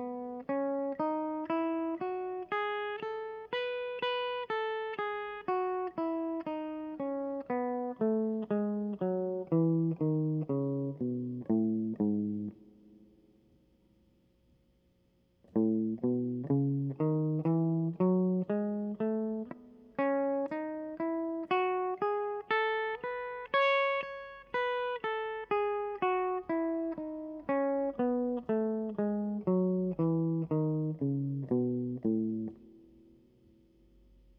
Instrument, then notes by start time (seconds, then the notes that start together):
electric guitar
0.00 B3
0.50 C#4
1.00 D#4
1.50 E4
2.02 F#4
2.52 G#4
3.03 A4
3.53 B4
4.03 B4
4.51 A4
4.99 G#4
5.49 F#4
5.99 E4
6.47 D#4
7.01 C#4
7.51 B3
8.02 A3
8.52 G#3
9.03 F#3
9.53 E3
10.02 D#3
10.51 C#3
11.03 B2
11.51 A2
12.02 G#2
15.59 A2
16.05 B2
16.52 C#3
17.02 D#3
17.47 E3
18.01 F#3
18.51 G#3
19.01 A3
19.99 C#4
20.52 D#4
21.01 E4
21.52 F#4
22.03 G#4
22.51 A4
23.04 B4
23.54 C#5
24.55 B4
25.05 A4
25.52 G#4
26.03 F#4
26.50 E4
26.99 D#4
27.50 C#4
28.00 B3
28.50 A3
29.00 G#3
29.49 F#3
30.00 E3
30.52 D#3
31.03 C#3
31.53 B2
32.07 A2